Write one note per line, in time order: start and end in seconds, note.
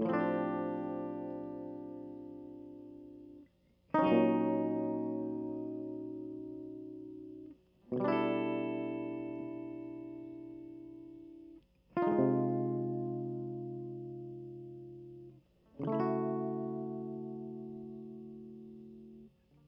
0.00 3.43 A2
0.00 0.37 A2
0.07 3.43 F3
0.07 3.45 C4
0.14 3.48 D4
3.95 7.55 D#4
3.99 7.51 F#3
3.99 7.58 C#4
4.14 7.58 A#2
7.94 11.39 B2
7.98 8.05 D3
7.98 11.54 G3
8.05 11.62 D4
8.05 11.62 E4
11.97 15.39 F4
12.03 15.45 D#4
12.08 15.39 G#3
12.20 15.42 C3
15.81 19.34 C#3
15.86 15.91 E3
15.86 19.31 A3
15.93 19.24 E4
16.01 19.28 F#4